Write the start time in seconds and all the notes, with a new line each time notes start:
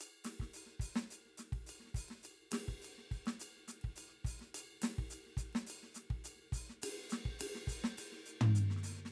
0.00 hi-hat pedal, ride bell
0.24 snare, hi-hat pedal, ride
0.40 kick, snare
0.53 hi-hat pedal, ride bell
0.66 snare
0.80 kick, hi-hat pedal, ride
0.95 snare, ride
1.10 hi-hat pedal, ride bell
1.25 snare
1.37 snare, hi-hat pedal, ride
1.52 kick, ride
1.66 hi-hat pedal, ride bell
1.80 snare
1.84 snare
1.86 snare
1.94 kick, hi-hat pedal, ride
2.08 snare, ride
2.23 hi-hat pedal, ride bell
2.51 snare, hi-hat pedal, ride
2.67 kick, snare
2.82 hi-hat pedal, ride bell
2.98 snare
3.11 kick, hi-hat pedal, ride
3.26 snare, ride
3.40 hi-hat pedal, ride bell
3.56 snare
3.68 snare, hi-hat pedal, ride
3.81 kick, ride
3.96 hi-hat pedal, ride bell
4.08 cross-stick
4.25 kick, hi-hat pedal, ride
4.39 snare, ride
4.54 hi-hat pedal, ride bell
4.82 snare, hi-hat pedal, ride
4.98 kick, snare
5.10 hi-hat pedal, ride bell
5.26 snare
5.37 kick, hi-hat pedal, ride
5.53 snare, ride
5.67 hi-hat pedal, ride bell
5.83 snare
5.94 snare, hi-hat pedal, ride
6.10 kick, ride
6.24 hi-hat pedal, ride bell
6.36 snare
6.39 snare
6.42 snare
6.52 kick, hi-hat pedal, ride
6.67 snare, ride
6.82 hi-hat pedal, ride
7.10 snare, hi-hat pedal, ride
7.25 kick, snare
7.39 hi-hat pedal, ride
7.55 snare
7.67 kick, hi-hat pedal, ride
7.84 snare
7.97 hi-hat pedal, ride
8.12 snare
8.26 snare, hi-hat pedal
8.41 floor tom
8.55 hi-hat pedal
8.70 snare
8.76 snare
8.83 snare, hi-hat pedal
8.89 snare
8.93 snare
8.97 snare
9.05 snare